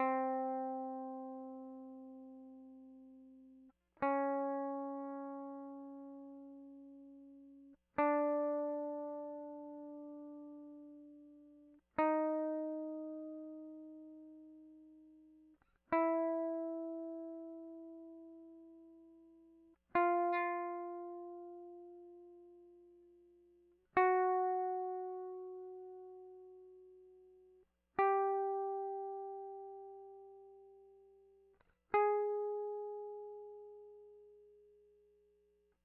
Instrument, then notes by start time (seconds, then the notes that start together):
electric guitar
0.00 C4
4.03 C#4
7.99 D4
11.99 D#4
15.93 E4
19.96 F4
23.97 F#4
27.99 G4
31.95 G#4